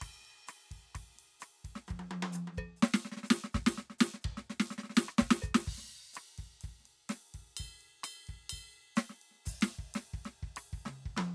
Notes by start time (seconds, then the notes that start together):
0.01 kick, cross-stick, hi-hat pedal, ride
0.21 snare
0.25 ride
0.47 cross-stick, hi-hat pedal, ride
0.71 kick, ride
0.77 kick
0.95 kick, cross-stick, hi-hat pedal, ride
1.01 kick
1.16 snare, ride
1.40 cross-stick, hi-hat pedal, ride
1.65 kick, ride
1.70 kick
1.76 snare
1.88 kick, hi-hat pedal, high tom
1.97 kick, high tom
2.11 high tom
2.23 high tom
2.33 hi-hat pedal, high tom
2.48 high tom
2.54 kick, hi-hat pedal
2.58 percussion
2.77 hi-hat pedal
2.83 snare
2.94 snare
3.00 hi-hat pedal
3.05 snare
3.12 snare
3.17 snare
3.24 snare, hi-hat pedal
3.31 snare
3.44 snare
3.53 kick, snare, hi-hat pedal
3.65 kick, snare
3.78 snare
3.90 snare
3.99 snare, hi-hat pedal
4.14 snare
4.22 kick, hi-hat pedal, floor tom
4.38 snare
4.44 hi-hat pedal
4.50 snare
4.60 snare
4.71 snare, hi-hat pedal
4.78 snare
4.84 snare
4.90 snare
4.95 snare, hi-hat pedal
5.09 cross-stick
5.18 kick, snare, hi-hat pedal
5.27 kick, snare
5.42 kick, hi-hat pedal, percussion
5.51 kick, snare
5.60 cross-stick
5.66 kick, crash
5.75 kick, snare
5.84 snare
5.89 snare
6.14 cross-stick, hi-hat pedal, ride
6.38 kick, ride
6.44 kick
6.61 kick, hi-hat pedal, ride
6.70 kick
6.80 snare
6.84 snare, ride
7.10 snare, hi-hat pedal, ride
7.34 kick, ride
7.40 kick
7.57 kick, hi-hat pedal, ride bell
7.66 kick
7.81 ride
8.04 cross-stick, hi-hat pedal, ride bell
8.27 kick, ride
8.34 kick
8.50 kick, hi-hat pedal, ride bell
8.58 kick
8.74 ride
8.96 snare, hi-hat pedal, ride
9.10 snare
9.22 ride
9.31 snare
9.35 snare
9.46 kick, hi-hat pedal
9.54 kick
9.62 snare, ride
9.79 kick
9.85 kick
9.94 snare, ride
10.14 kick
10.25 snare, ride
10.43 kick
10.57 cross-stick, ride
10.73 kick
10.86 snare, mid tom
11.06 kick
11.17 snare, high tom